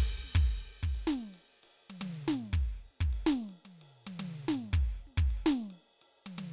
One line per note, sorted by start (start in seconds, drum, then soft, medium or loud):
0.24 snare soft
0.35 kick medium
0.35 ride medium
0.49 hi-hat pedal medium
0.69 snare soft
0.83 kick medium
0.95 ride medium
1.06 snare medium
1.06 hi-hat pedal medium
1.34 ride medium
1.46 snare soft
1.59 hi-hat pedal medium
1.63 ride medium
1.90 high tom medium
2.01 high tom medium
2.14 hi-hat pedal medium
2.14 ride medium
2.28 snare medium
2.53 kick medium
2.53 ride medium
2.69 hi-hat pedal medium
2.91 snare soft
3.01 kick medium
3.13 ride medium
3.25 snare loud
3.25 hi-hat pedal medium
3.49 ride medium
3.65 high tom soft
3.78 hi-hat pedal medium
3.78 ride medium
4.07 high tom medium
4.19 high tom medium
4.34 hi-hat pedal medium
4.34 ride medium
4.48 snare medium
4.73 kick medium
4.73 ride medium
4.90 hi-hat pedal medium
5.07 snare soft
5.17 kick medium
5.31 ride medium
5.45 snare loud
5.45 hi-hat pedal medium
5.70 ride medium
5.99 hi-hat pedal medium
5.99 ride medium
6.26 high tom medium
6.38 high tom medium